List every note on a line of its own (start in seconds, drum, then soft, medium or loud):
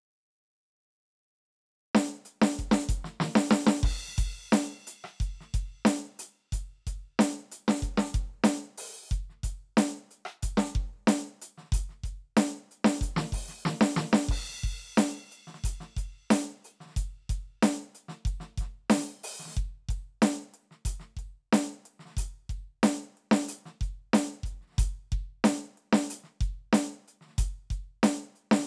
1.95 snare loud
2.25 closed hi-hat medium
2.42 snare loud
2.58 closed hi-hat medium
2.58 kick medium
2.71 snare loud
2.89 closed hi-hat loud
2.89 kick loud
3.04 snare medium
3.20 snare loud
3.35 snare loud
3.51 snare loud
3.67 snare loud
3.83 kick loud
3.83 crash loud
4.08 snare soft
4.18 closed hi-hat loud
4.18 kick loud
4.52 closed hi-hat loud
4.52 snare loud
4.87 closed hi-hat loud
5.04 cross-stick medium
5.20 closed hi-hat medium
5.20 kick medium
5.40 snare soft
5.54 closed hi-hat medium
5.54 kick medium
5.85 closed hi-hat loud
5.85 snare loud
6.19 closed hi-hat loud
6.52 closed hi-hat loud
6.52 kick medium
6.87 closed hi-hat medium
6.87 kick medium
7.19 closed hi-hat loud
7.19 snare loud
7.52 closed hi-hat loud
7.68 snare loud
7.82 closed hi-hat medium
7.82 kick medium
7.97 snare loud
8.14 closed hi-hat medium
8.14 kick loud
8.44 open hi-hat loud
8.44 snare loud
8.78 open hi-hat loud
9.09 closed hi-hat medium
9.09 kick medium
9.09 hi-hat pedal soft
9.29 snare soft
9.35 snare soft
9.43 closed hi-hat loud
9.43 kick medium
9.77 closed hi-hat loud
9.77 snare loud
10.11 closed hi-hat soft
10.25 cross-stick medium
10.43 closed hi-hat loud
10.43 kick medium
10.57 snare loud
10.70 snare soft
10.75 kick loud
10.75 closed hi-hat soft
11.07 closed hi-hat loud
11.07 snare loud
11.42 closed hi-hat loud
11.58 snare soft
11.63 snare soft
11.72 closed hi-hat loud
11.72 kick loud
11.89 snare soft
12.04 closed hi-hat medium
12.04 kick medium
12.37 closed hi-hat loud
12.37 snare loud
12.71 closed hi-hat soft
12.84 snare loud
13.01 closed hi-hat loud
13.01 kick medium
13.16 snare loud
13.30 open hi-hat loud
13.30 kick medium
13.30 snare soft
13.48 snare soft
13.63 snare loud
13.63 hi-hat pedal soft
13.81 snare loud
13.96 snare loud
14.13 snare loud
14.29 kick loud
14.29 crash loud
14.49 snare soft
14.62 kick medium
14.62 closed hi-hat soft
14.97 closed hi-hat loud
14.97 snare loud
15.31 closed hi-hat medium
15.47 snare soft
15.54 snare soft
15.64 closed hi-hat loud
15.64 kick medium
15.80 snare soft
15.96 closed hi-hat medium
15.96 kick medium
16.30 open hi-hat loud
16.30 snare loud
16.64 open hi-hat medium
16.64 hi-hat pedal soft
16.80 snare soft
16.86 snare soft
16.89 snare soft
16.96 closed hi-hat loud
16.96 kick medium
17.29 closed hi-hat medium
17.29 kick medium
17.63 closed hi-hat loud
17.63 snare loud
17.95 closed hi-hat medium
18.08 snare medium
18.25 kick medium
18.25 closed hi-hat medium
18.40 snare medium
18.57 closed hi-hat medium
18.57 kick medium
18.57 snare soft
18.90 open hi-hat loud
18.90 snare loud
18.97 snare soft
19.23 open hi-hat loud
19.39 snare soft
19.45 snare soft
19.48 snare soft
19.51 snare soft
19.51 hi-hat pedal soft
19.57 kick medium
19.57 closed hi-hat medium
19.89 kick medium
19.89 closed hi-hat medium
20.22 closed hi-hat loud
20.22 snare loud
20.54 closed hi-hat medium
20.71 snare soft
20.85 closed hi-hat loud
20.85 kick medium
21.00 snare soft
21.17 kick medium
21.17 closed hi-hat medium
21.53 closed hi-hat loud
21.53 snare loud
21.85 closed hi-hat medium
21.99 snare soft
22.05 snare soft
22.09 snare soft
22.17 closed hi-hat loud
22.17 kick medium
22.49 kick medium
22.49 closed hi-hat medium
22.83 closed hi-hat loud
22.83 snare loud
23.17 closed hi-hat soft
23.31 snare loud
23.48 closed hi-hat loud
23.65 snare soft
23.81 closed hi-hat soft
23.81 kick medium
24.13 closed hi-hat loud
24.13 snare loud
24.43 closed hi-hat medium
24.43 kick medium
24.61 snare soft
24.66 snare soft
24.69 snare soft
24.72 snare soft
24.73 snare soft
24.78 closed hi-hat loud
24.78 kick loud
25.12 kick medium
25.12 closed hi-hat medium
25.44 closed hi-hat loud
25.44 snare loud
25.51 snare soft
25.77 closed hi-hat soft
25.93 snare loud
26.10 closed hi-hat loud
26.24 snare soft
26.41 closed hi-hat medium
26.41 kick loud
26.73 closed hi-hat loud
26.73 snare loud
27.08 closed hi-hat medium
27.21 snare soft
27.25 snare soft
27.28 snare soft
27.33 snare soft
27.38 closed hi-hat loud
27.38 kick loud
27.70 closed hi-hat soft
27.70 kick medium
28.03 closed hi-hat loud
28.03 snare loud
28.35 closed hi-hat soft
28.51 snare loud
28.58 snare soft